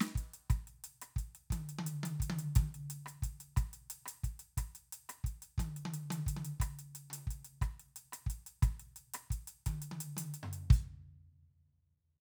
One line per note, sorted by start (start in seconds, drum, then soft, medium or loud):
0.01 snare medium
0.01 closed hi-hat medium
0.16 kick medium
0.16 closed hi-hat medium
0.34 closed hi-hat medium
0.50 kick medium
0.50 cross-stick medium
0.50 closed hi-hat medium
0.68 closed hi-hat soft
0.84 closed hi-hat medium
1.02 cross-stick medium
1.02 closed hi-hat medium
1.17 kick medium
1.17 closed hi-hat medium
1.35 closed hi-hat soft
1.51 kick medium
1.51 closed hi-hat medium
1.51 high tom medium
1.69 closed hi-hat medium
1.79 high tom loud
1.87 closed hi-hat medium
2.04 closed hi-hat medium
2.04 high tom loud
2.20 kick medium
2.20 closed hi-hat medium
2.30 high tom loud
2.39 closed hi-hat medium
2.56 kick loud
2.56 closed hi-hat medium
2.56 high tom medium
2.75 closed hi-hat soft
2.90 closed hi-hat medium
3.06 cross-stick medium
3.06 closed hi-hat medium
3.23 kick medium
3.23 closed hi-hat medium
3.41 closed hi-hat medium
3.57 kick medium
3.57 cross-stick medium
3.57 closed hi-hat medium
3.74 closed hi-hat medium
3.90 closed hi-hat medium
4.06 cross-stick medium
4.06 closed hi-hat medium
4.24 kick medium
4.24 closed hi-hat medium
4.40 closed hi-hat medium
4.58 kick medium
4.58 cross-stick medium
4.58 closed hi-hat medium
4.75 closed hi-hat medium
4.93 closed hi-hat medium
5.10 cross-stick medium
5.10 closed hi-hat medium
5.24 kick medium
5.24 closed hi-hat medium
5.42 closed hi-hat medium
5.58 kick medium
5.58 closed hi-hat medium
5.58 high tom medium
5.77 closed hi-hat soft
5.86 high tom medium
5.94 closed hi-hat medium
6.11 closed hi-hat medium
6.11 high tom loud
6.27 kick medium
6.27 closed hi-hat medium
6.37 high tom medium
6.45 closed hi-hat medium
6.60 kick medium
6.60 cross-stick medium
6.60 closed hi-hat medium
6.79 closed hi-hat medium
6.95 closed hi-hat medium
7.11 closed hi-hat medium
7.11 high tom soft
7.27 kick soft
7.27 closed hi-hat medium
7.45 closed hi-hat medium
7.62 kick medium
7.62 cross-stick medium
7.62 closed hi-hat soft
7.80 closed hi-hat soft
7.96 closed hi-hat medium
8.13 cross-stick medium
8.13 closed hi-hat medium
8.27 kick medium
8.27 closed hi-hat medium
8.47 closed hi-hat medium
8.63 kick loud
8.63 cross-stick medium
8.63 closed hi-hat medium
8.80 closed hi-hat soft
8.96 closed hi-hat medium
9.14 cross-stick medium
9.14 closed hi-hat medium
9.31 kick medium
9.31 closed hi-hat medium
9.48 closed hi-hat medium
9.67 kick medium
9.67 closed hi-hat medium
9.67 high tom medium
9.82 closed hi-hat medium
9.92 high tom medium
10.01 closed hi-hat medium
10.17 closed hi-hat medium
10.17 high tom medium
10.34 closed hi-hat medium
10.43 floor tom medium
10.53 closed hi-hat medium
10.71 closed hi-hat medium
10.71 kick loud